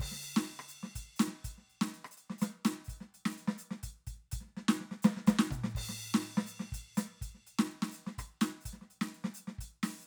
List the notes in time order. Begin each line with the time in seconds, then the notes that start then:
0.01 kick, crash
0.07 kick
0.13 snare
0.22 closed hi-hat, hi-hat pedal
0.38 snare
0.44 hi-hat pedal
0.60 cross-stick
0.70 hi-hat pedal
0.74 closed hi-hat
0.84 snare
0.97 closed hi-hat, kick
1.17 closed hi-hat, snare, hi-hat pedal
1.29 snare
1.46 closed hi-hat, kick
1.59 snare
1.71 closed hi-hat
1.82 snare
1.95 closed hi-hat
2.06 cross-stick
2.12 hi-hat pedal
2.18 closed hi-hat
2.31 snare
2.40 closed hi-hat, snare, hi-hat pedal
2.66 closed hi-hat, snare
2.86 kick, hi-hat pedal
2.91 closed hi-hat
3.02 snare
3.15 closed hi-hat
3.27 snare
3.32 hi-hat pedal
3.39 closed hi-hat
3.49 snare
3.59 closed hi-hat, hi-hat pedal
3.72 snare
3.84 closed hi-hat, kick
4.08 closed hi-hat, kick
4.14 kick, snare
4.33 closed hi-hat, kick
4.41 kick, snare
4.43 kick
4.47 snare
4.58 snare
4.70 snare, hi-hat pedal
4.82 snare
4.92 snare
5.04 snare, hi-hat pedal
5.18 snare
5.28 kick, snare, hi-hat pedal
5.40 snare
5.52 kick, hi-hat pedal, mid tom
5.65 snare
5.70 hi-hat pedal
5.76 kick, crash
5.82 kick
5.85 kick
5.90 snare
6.03 closed hi-hat
6.15 snare
6.28 closed hi-hat
6.38 snare
6.48 closed hi-hat, hi-hat pedal
6.61 snare
6.73 open hi-hat, kick
6.79 kick
6.96 closed hi-hat, snare, hi-hat pedal
7.23 closed hi-hat, kick
7.31 kick
7.36 snare
7.48 closed hi-hat
7.60 snare
7.73 closed hi-hat
7.83 snare
7.93 closed hi-hat, hi-hat pedal
8.08 snare
8.20 closed hi-hat, kick, cross-stick
8.42 closed hi-hat, snare
8.62 hi-hat pedal
8.67 closed hi-hat, kick
8.74 snare
8.83 snare
8.92 closed hi-hat
9.03 snare
9.16 closed hi-hat
9.25 snare
9.35 closed hi-hat, hi-hat pedal
9.49 snare
9.60 closed hi-hat, kick
9.84 open hi-hat, snare
10.03 hi-hat pedal